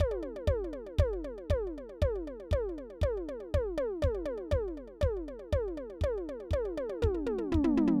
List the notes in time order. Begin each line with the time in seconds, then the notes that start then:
0.00 kick, high tom
0.11 high tom
0.23 high tom
0.36 high tom
0.47 kick, high tom
0.64 high tom
0.73 high tom
0.86 high tom
0.99 kick, high tom
1.13 high tom
1.24 high tom
1.38 high tom
1.50 kick, high tom
1.67 high tom
1.78 high tom
1.89 high tom
2.02 kick, high tom
2.16 high tom
2.27 high tom
2.40 high tom
2.51 kick, high tom
2.69 high tom
2.78 high tom
2.90 high tom
3.02 kick, high tom
3.17 high tom
3.29 high tom
3.40 high tom
3.54 kick, high tom
3.78 high tom
4.02 kick, high tom
4.14 high tom
4.26 high tom
4.38 high tom
4.51 kick, high tom
4.68 high tom
4.77 high tom
4.87 high tom
5.01 kick, high tom
5.17 high tom
5.28 high tom
5.39 high tom
5.53 kick, high tom
5.68 high tom
5.77 high tom
5.90 high tom
6.01 kick, high tom
6.18 high tom
6.29 high tom
6.40 high tom
6.51 kick, high tom
6.65 high tom
6.77 high tom
6.89 high tom
7.02 kick, mid tom
7.14 mid tom
7.26 mid tom
7.38 mid tom
7.52 kick, floor tom
7.64 floor tom
7.77 floor tom
7.87 floor tom